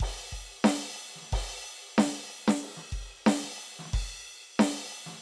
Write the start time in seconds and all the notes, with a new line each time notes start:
0.01 kick, crash
0.33 kick
0.65 cross-stick, snare, crash
1.00 hi-hat pedal
1.16 snare
1.23 snare
1.27 snare
1.33 kick, crash
1.99 snare, crash
2.07 snare
2.49 snare
2.64 crash
2.78 snare
2.93 kick
3.27 snare, crash
3.35 cross-stick
3.44 snare
3.61 hi-hat pedal
3.80 snare
3.86 snare
3.90 kick, snare, crash
4.60 snare, crash
5.07 snare
5.11 snare
5.14 cross-stick, snare